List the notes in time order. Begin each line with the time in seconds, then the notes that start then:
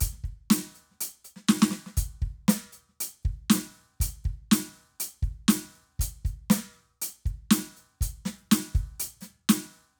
0.02 closed hi-hat, kick
0.13 snare
0.25 kick, closed hi-hat
0.51 closed hi-hat, snare
0.58 snare
0.76 closed hi-hat
0.92 snare
1.02 closed hi-hat
1.26 closed hi-hat
1.37 snare
1.49 snare, hi-hat pedal
1.63 snare
1.72 snare
1.87 snare
1.98 closed hi-hat, kick
2.23 kick, closed hi-hat
2.49 closed hi-hat, snare
2.74 closed hi-hat
2.90 snare
3.01 closed hi-hat
3.24 kick, closed hi-hat
3.51 closed hi-hat, snare
3.56 snare
3.76 closed hi-hat
4.01 closed hi-hat, kick
4.06 snare
4.26 kick, closed hi-hat
4.53 closed hi-hat, snare
5.01 closed hi-hat
5.24 kick, closed hi-hat
5.49 closed hi-hat, snare
5.76 closed hi-hat
6.00 closed hi-hat, kick
6.26 closed hi-hat, kick
6.51 closed hi-hat, snare
6.57 snare
6.75 closed hi-hat
7.03 closed hi-hat
7.27 kick, closed hi-hat
7.52 closed hi-hat, snare
7.59 snare
7.78 closed hi-hat
8.02 closed hi-hat, kick, snare
8.26 closed hi-hat, snare
8.53 closed hi-hat, snare
8.76 closed hi-hat, kick
9.01 closed hi-hat
9.22 closed hi-hat, snare, hi-hat pedal
9.50 closed hi-hat, snare